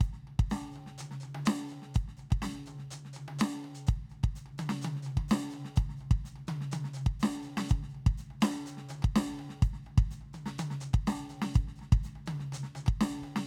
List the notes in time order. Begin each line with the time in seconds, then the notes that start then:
0.01 kick, hi-hat pedal, high tom
0.13 snare
0.27 high tom
0.40 kick, high tom
0.50 snare, hi-hat pedal
0.64 high tom
0.72 hi-hat pedal
0.76 high tom
0.87 snare
0.98 hi-hat pedal, high tom
1.11 snare
1.20 hi-hat pedal, high tom
1.35 high tom
1.46 snare, hi-hat pedal
1.59 high tom
1.68 hi-hat pedal, high tom
1.82 snare
1.95 kick, hi-hat pedal, high tom
2.08 snare
2.17 hi-hat pedal, high tom
2.31 kick, high tom
2.42 snare, hi-hat pedal
2.55 high tom
2.66 hi-hat pedal, high tom
2.79 snare
2.91 hi-hat pedal, high tom
3.05 snare
3.13 hi-hat pedal, high tom
3.28 high tom
3.39 snare, hi-hat pedal
3.52 high tom
3.61 hi-hat pedal, high tom
3.75 closed hi-hat
3.87 kick, hi-hat pedal, high tom
4.10 hi-hat pedal, high tom
4.24 kick, high tom
4.35 snare, hi-hat pedal
4.46 high tom
4.58 hi-hat pedal, high tom
4.70 snare
4.82 hi-hat pedal, high tom
4.96 snare
5.03 hi-hat pedal
5.07 high tom
5.17 kick, high tom
5.29 snare, hi-hat pedal
5.43 high tom
5.50 hi-hat pedal, high tom
5.65 snare
5.76 kick, hi-hat pedal, high tom
5.90 snare
5.97 hi-hat pedal
6.01 high tom
6.11 kick, high tom
6.25 snare, hi-hat pedal
6.36 high tom
6.47 hi-hat pedal, high tom
6.61 snare
6.72 hi-hat pedal, high tom
6.84 snare
6.94 hi-hat pedal, high tom
7.07 kick, high tom
7.20 snare, hi-hat pedal
7.36 high tom
7.43 hi-hat pedal
7.47 high tom
7.57 snare
7.69 kick, hi-hat pedal, high tom
7.83 snare
7.89 hi-hat pedal
7.95 high tom
8.07 kick, high tom
8.18 snare, hi-hat pedal
8.31 high tom
8.41 snare, hi-hat pedal
8.55 high tom
8.66 hi-hat pedal, high tom
8.78 snare
8.89 hi-hat pedal, high tom
9.03 kick, high tom
9.16 snare, hi-hat pedal
9.24 snare, high tom
9.32 kick
9.37 hi-hat pedal, high tom
9.50 snare
9.63 kick, hi-hat pedal, high tom
9.73 snare
9.84 hi-hat pedal, high tom
9.98 kick, high tom
10.11 snare, hi-hat pedal
10.21 high tom
10.34 hi-hat pedal, high tom
10.46 snare
10.59 hi-hat pedal, high tom
10.71 snare
10.81 hi-hat pedal, high tom
10.94 kick, high tom
11.07 snare, hi-hat pedal
11.18 high tom
11.29 hi-hat pedal, high tom
11.42 snare
11.54 kick, hi-hat pedal, high tom
11.68 snare
11.76 hi-hat pedal, high tom
11.82 snare
11.92 kick, high tom
12.04 snare, hi-hat pedal
12.16 high tom
12.26 hi-hat pedal, high tom
12.40 snare
12.53 hi-hat pedal, high tom
12.63 snare
12.75 hi-hat pedal, high tom
12.87 kick, high tom
13.01 snare, hi-hat pedal
13.11 high tom
13.22 kick, hi-hat pedal, high tom
13.36 snare